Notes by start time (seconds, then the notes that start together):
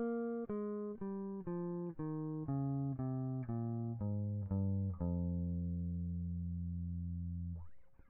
0.00 A#3
0.50 G#3
1.03 G3
1.48 F3
2.01 D#3
2.50 C#3
3.01 C3
3.51 A#2
4.04 G#2
4.44 G2
4.54 G2
5.03 F2